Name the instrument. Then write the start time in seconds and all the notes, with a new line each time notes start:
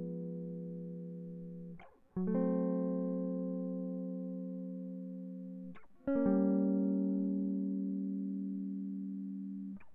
electric guitar
2.17 F#3
2.28 A3
2.35 C4
6.08 C#4
6.16 A#3
6.27 G3